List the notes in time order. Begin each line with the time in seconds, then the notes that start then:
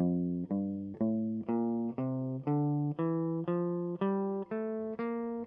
0.02 F2
0.53 G2
1.03 A2
1.51 A#2
2.00 C3
2.49 D3
3.00 E3
3.49 F3
4.03 G3
4.53 A3
5.00 A#3